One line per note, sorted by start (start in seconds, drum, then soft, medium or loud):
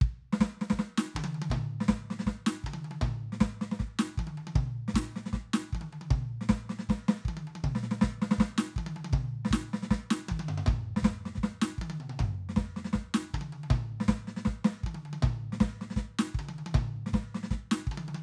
0.05 kick loud
0.33 snare loud
0.41 kick soft
0.41 snare loud
0.62 snare medium
0.70 kick soft
0.70 snare loud
0.79 snare medium
0.98 snare loud
1.16 kick soft
1.16 high tom loud
1.24 high tom loud
1.35 high tom medium
1.42 high tom loud
1.50 kick medium
1.50 mid tom loud
1.81 snare medium
1.89 kick medium
1.89 snare loud
2.11 snare medium
2.20 snare medium
2.27 kick medium
2.27 snare medium
2.47 snare loud
2.64 kick medium
2.64 high tom medium
2.74 high tom loud
2.85 high tom medium
2.91 high tom medium
3.02 kick medium
3.02 mid tom loud
3.33 snare medium
3.41 kick medium
3.41 snare loud
3.62 snare medium
3.72 snare medium
3.80 kick medium
3.80 snare medium
3.99 snare loud
4.18 kick medium
4.18 high tom loud
4.27 high tom medium
4.38 high tom medium
4.47 high tom medium
4.56 kick loud
4.56 mid tom loud
4.88 snare medium
4.95 kick medium
4.95 snare loud
5.16 snare medium
5.26 snare medium
5.33 kick medium
5.33 snare medium
5.54 snare loud
5.73 kick medium
5.73 high tom medium
5.81 high tom medium
5.92 snare soft
5.92 high tom medium
6.02 high tom medium
6.11 kick loud
6.11 mid tom loud
6.41 snare medium
6.49 kick medium
6.49 snare loud
6.70 snare medium
6.79 snare medium
6.89 kick medium
6.89 snare loud
7.09 snare loud
7.26 kick medium
7.26 high tom medium
7.37 high tom medium
7.48 high tom medium
7.56 high tom medium
7.64 kick medium
7.64 mid tom loud
7.76 snare medium
7.83 snare medium
7.92 snare medium
8.02 kick medium
8.02 snare loud
8.22 snare loud
8.31 snare loud
8.39 kick medium
8.39 snare loud
8.58 snare loud
8.77 kick medium
8.77 high tom loud
8.87 high tom loud
8.97 high tom medium
9.05 high tom loud
9.13 kick loud
9.13 mid tom loud
9.45 snare medium
9.51 kick medium
9.51 snare loud
9.74 snare medium
9.83 snare medium
9.91 kick medium
9.91 snare loud
10.11 snare loud
10.29 kick medium
10.29 high tom loud
10.40 high tom loud
10.49 floor tom loud
10.58 floor tom loud
10.67 kick loud
10.67 mid tom loud
10.97 snare medium
11.03 kick medium
11.03 snare loud
11.26 snare medium
11.35 kick medium
11.35 snare soft
11.44 snare loud
11.62 snare loud
11.78 kick medium
11.78 high tom loud
11.90 high tom loud
12.01 mid tom medium
12.10 mid tom medium
12.20 kick medium
12.20 floor tom loud
12.49 snare medium
12.57 kick medium
12.57 snare loud
12.77 snare medium
12.85 snare medium
12.93 kick medium
12.93 snare loud
13.15 snare loud
13.34 kick medium
13.34 high tom medium
13.41 high tom medium
13.53 high tom medium
13.64 high tom medium
13.71 kick loud
13.71 mid tom loud
14.01 snare medium
14.09 kick medium
14.09 snare loud
14.28 snare medium
14.37 snare medium
14.45 kick medium
14.45 snare loud
14.65 snare loud
14.84 kick medium
14.84 high tom medium
14.95 high tom medium
15.06 high tom medium
15.13 high tom medium
15.23 kick loud
15.23 mid tom loud
15.53 snare medium
15.61 kick medium
15.61 snare loud
15.81 snare medium
15.91 snare medium
15.97 kick medium
15.97 snare medium
16.19 snare loud
16.35 kick medium
16.39 high tom medium
16.49 high tom medium
16.59 high tom medium
16.67 high tom loud
16.75 kick loud
16.75 mid tom loud
17.07 snare medium
17.14 kick medium
17.14 snare loud
17.35 snare medium
17.44 snare medium
17.51 kick medium
17.51 snare medium
17.72 snare loud
17.87 kick medium
17.92 high tom medium
17.98 high tom loud
18.09 high tom medium
18.15 high tom loud